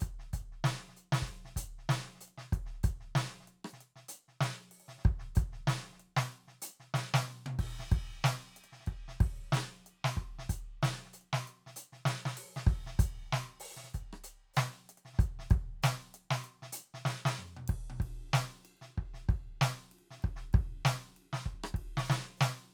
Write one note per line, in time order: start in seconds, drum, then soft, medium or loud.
0.01 closed hi-hat medium
0.01 kick medium
0.20 snare soft
0.34 closed hi-hat medium
0.34 kick medium
0.52 snare soft
0.65 snare loud
0.80 snare soft
0.89 snare soft
0.97 closed hi-hat soft
1.13 snare loud
1.23 kick medium
1.28 open hi-hat soft
1.38 hi-hat pedal soft
1.46 snare soft
1.57 closed hi-hat loud
1.57 kick medium
1.79 snare soft
1.90 snare loud
1.90 hi-hat pedal soft
2.06 snare soft
2.15 snare soft
2.21 closed hi-hat medium
2.28 closed hi-hat soft
2.38 snare medium
2.53 kick loud
2.53 closed hi-hat medium
2.67 snare soft
2.74 snare soft
2.84 closed hi-hat medium
2.84 kick loud
3.01 snare soft
3.16 snare loud
3.31 snare soft
3.41 snare soft
3.48 closed hi-hat soft
3.65 cross-stick medium
3.69 hi-hat pedal medium
3.74 snare soft
3.81 closed hi-hat medium
3.96 snare soft
4.09 closed hi-hat loud
4.29 snare soft
4.41 snare loud
4.55 snare soft
4.59 snare soft
4.62 snare soft
4.72 open hi-hat medium
4.80 open hi-hat soft
4.89 snare soft
5.05 kick loud
5.05 hi-hat pedal soft
5.05 open hi-hat soft
5.20 snare soft
5.36 closed hi-hat medium
5.36 kick loud
5.53 snare soft
5.68 snare loud
5.84 snare soft
5.93 snare soft
6.00 closed hi-hat soft
6.17 snare loud
6.22 hi-hat pedal soft
6.32 open hi-hat soft
6.48 snare soft
6.60 closed hi-hat loud
6.60 hi-hat pedal soft
6.80 snare soft
6.95 snare loud
7.14 snare loud
7.26 hi-hat pedal soft
7.26 high tom medium
7.47 high tom loud
7.59 kick medium
7.59 crash medium
7.80 snare medium
7.92 kick loud
7.92 closed hi-hat medium
8.25 snare loud
8.25 hi-hat pedal soft
8.48 snare soft
8.55 closed hi-hat medium
8.55 hi-hat pedal soft
8.64 closed hi-hat soft
8.73 snare soft
8.81 snare soft
8.87 kick medium
8.87 closed hi-hat soft
9.09 snare soft
9.21 kick loud
9.21 open hi-hat medium
9.53 snare loud
9.58 cross-stick medium
9.87 closed hi-hat medium
10.05 snare loud
10.18 kick medium
10.39 snare medium
10.50 closed hi-hat medium
10.50 kick medium
10.83 snare loud
10.83 hi-hat pedal medium
10.98 snare soft
11.06 snare soft
11.14 closed hi-hat medium
11.22 open hi-hat soft
11.34 snare loud
11.48 closed hi-hat medium
11.67 snare soft
11.72 hi-hat pedal soft
11.77 closed hi-hat loud
11.93 snare soft
12.06 snare loud
12.06 hi-hat pedal soft
12.26 snare medium
12.38 open hi-hat medium
12.57 snare medium
12.67 kick loud
12.67 crash soft
12.87 snare soft
13.00 closed hi-hat loud
13.00 kick loud
13.33 snare loud
13.33 hi-hat pedal soft
13.44 snare soft
13.61 open hi-hat medium
13.70 open hi-hat soft
13.77 snare soft
13.84 snare soft
13.84 hi-hat pedal soft
13.94 closed hi-hat soft
13.94 kick medium
14.13 cross-stick medium
14.24 closed hi-hat medium
14.54 snare loud
14.54 closed hi-hat medium
14.54 hi-hat pedal medium
14.72 snare soft
14.90 closed hi-hat medium
14.98 closed hi-hat soft
15.06 snare soft
15.14 snare soft
15.19 closed hi-hat medium
15.19 kick loud
15.40 snare soft
15.51 kick loud
15.51 closed hi-hat medium
15.83 open hi-hat loud
15.83 snare loud
15.83 hi-hat pedal medium
16.15 closed hi-hat medium
16.31 snare loud
16.39 hi-hat pedal soft
16.44 closed hi-hat medium
16.63 snare soft
16.63 hi-hat pedal soft
16.73 closed hi-hat loud
16.95 snare medium
17.06 snare loud
17.06 hi-hat pedal medium
17.26 snare loud
17.33 hi-hat pedal soft
17.39 mid tom medium
17.57 high tom medium
17.68 kick medium
17.68 crash medium
17.90 high tom medium
18.01 kick medium
18.01 ride medium
18.34 snare loud
18.34 hi-hat pedal medium
18.61 hi-hat pedal soft
18.66 ride bell soft
18.78 ride soft
18.82 snare soft
18.98 kick medium
19.14 snare soft
19.29 kick loud
19.29 ride bell soft
19.62 snare loud
19.62 hi-hat pedal medium
19.92 ride soft
19.99 ride soft
20.11 snare soft
20.11 hi-hat pedal soft
20.20 snare soft
20.20 ride soft
20.25 kick medium
20.37 snare soft
20.54 kick loud
20.54 ride soft
20.86 snare loud
20.86 hi-hat pedal medium
21.17 ride soft
21.34 snare medium
21.46 kick medium
21.64 cross-stick medium
21.75 kick medium
21.75 ride medium
21.98 snare loud
22.06 hi-hat pedal medium
22.10 snare loud
22.38 snare loud
22.38 hi-hat pedal soft